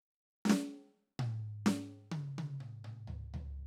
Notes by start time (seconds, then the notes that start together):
0.45 snare
0.49 snare
1.19 mid tom
1.66 snare
2.12 high tom
2.38 high tom
2.60 mid tom
2.84 mid tom
3.07 floor tom
3.34 floor tom